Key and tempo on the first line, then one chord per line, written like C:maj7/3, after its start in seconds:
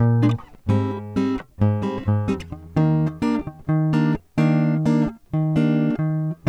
D# major, 129 BPM
0.00 A#:7
0.91 G#:maj7
2.77 D#:maj7